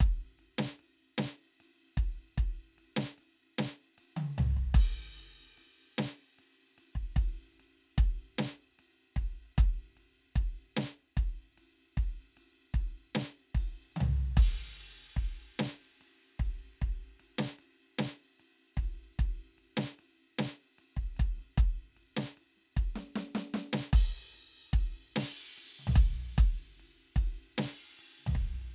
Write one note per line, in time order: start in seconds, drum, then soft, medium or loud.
0.01 kick loud
0.01 ride soft
0.25 snare soft
0.40 ride soft
0.59 snare loud
0.80 ride soft
1.19 snare loud
1.19 ride medium
1.33 snare soft
1.61 ride medium
1.98 kick medium
1.98 ride medium
2.39 kick medium
2.39 ride medium
2.68 snare soft
2.79 ride soft
2.97 snare loud
3.11 snare soft
3.16 snare soft
3.16 ride soft
3.59 snare loud
3.59 ride medium
3.99 ride medium
4.17 high tom loud
4.39 floor tom loud
4.58 kick soft
4.75 kick loud
4.75 ride medium
4.75 crash medium
5.21 ride soft
5.58 ride medium
5.99 snare loud
5.99 ride medium
6.40 ride medium
6.79 ride medium
6.96 kick soft
7.17 kick medium
7.17 ride medium
7.61 ride medium
7.99 kick loud
7.99 ride medium
8.39 snare loud
8.39 ride medium
8.80 ride medium
9.17 kick medium
9.17 ride medium
9.59 kick loud
9.59 ride medium
9.98 ride medium
10.37 kick medium
10.37 ride medium
10.78 snare loud
11.18 kick medium
11.18 ride medium
11.59 ride medium
11.98 kick medium
11.98 ride medium
12.38 ride medium
12.75 kick medium
12.75 ride medium
13.16 snare loud
13.16 ride medium
13.55 kick medium
13.55 ride medium
13.97 high tom loud
14.01 floor tom loud
14.38 kick loud
14.38 crash medium
14.78 ride soft
15.17 kick medium
15.17 ride medium
15.60 snare loud
15.60 ride medium
16.02 ride medium
16.40 kick medium
16.40 ride medium
16.66 snare soft
16.70 snare soft
16.82 kick medium
16.82 ride medium
17.21 ride medium
17.39 snare loud
17.54 snare soft
17.58 snare soft
17.58 ride medium
18.00 snare loud
18.00 ride medium
18.41 ride medium
18.78 kick medium
18.78 ride medium
18.97 snare soft
19.20 kick medium
19.20 ride medium
19.59 ride soft
19.78 snare loud
19.92 snare soft
20.00 ride medium
20.39 snare loud
20.39 ride medium
20.79 ride medium
20.98 kick medium
21.18 kick medium
21.18 ride medium
21.38 snare soft
21.40 snare soft
21.59 kick loud
21.59 ride medium
21.76 snare soft
21.98 ride soft
22.18 snare loud
22.38 ride medium
22.57 snare soft
22.78 kick medium
22.78 ride medium
22.96 snare medium
23.16 snare loud
23.36 snare loud
23.55 snare loud
23.74 snare loud
23.94 kick loud
23.94 crash medium
24.21 kick soft
24.35 ride soft
24.74 kick loud
24.74 ride medium
25.17 snare loud
25.17 crash loud
25.32 snare soft
25.59 ride medium
25.80 high tom soft
25.88 floor tom loud
25.96 kick loud
26.39 kick loud
26.39 ride medium
26.80 ride medium
27.17 kick medium
27.17 ride medium
27.59 snare loud
27.59 crash medium
27.73 snare soft
28.00 ride medium
28.20 high tom soft
28.27 floor tom loud
28.36 kick medium